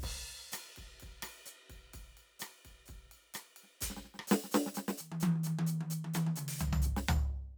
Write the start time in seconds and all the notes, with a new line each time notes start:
0.01 kick, hi-hat pedal, crash
0.10 kick
0.15 snare
0.52 cross-stick, hi-hat pedal, ride
0.76 kick, ride
0.81 kick, snare
0.86 snare
1.00 kick, hi-hat pedal, ride
1.08 kick
1.23 cross-stick, ride
1.46 hi-hat pedal, ride
1.70 kick, ride
1.75 kick
1.93 kick, hi-hat pedal, ride
2.00 kick
2.17 ride
2.40 cross-stick, hi-hat pedal, ride
2.65 kick, snare, ride
2.86 kick, hi-hat pedal, ride
3.12 ride
3.34 cross-stick, hi-hat pedal, ride
3.56 ride
3.63 snare
3.81 kick, closed hi-hat, hi-hat pedal
3.88 kick, snare
3.97 snare
4.05 snare
4.14 snare
4.19 cross-stick
4.27 snare, hi-hat pedal
4.44 snare
4.51 snare, hi-hat pedal
4.67 snare
4.75 snare, hi-hat pedal
4.88 snare
4.98 hi-hat pedal, high tom
5.12 high tom
5.20 hi-hat pedal, high tom
5.36 high tom
5.44 hi-hat pedal, high tom
5.59 high tom
5.67 hi-hat pedal
5.81 high tom
5.90 hi-hat pedal
6.05 high tom
6.14 hi-hat pedal, high tom
6.27 high tom
6.36 hi-hat pedal, mid tom
6.48 closed hi-hat
6.59 floor tom, hi-hat pedal
6.63 kick
6.68 kick
6.73 floor tom
6.82 kick, hi-hat pedal
6.92 kick
6.97 snare
7.08 kick, hi-hat pedal, floor tom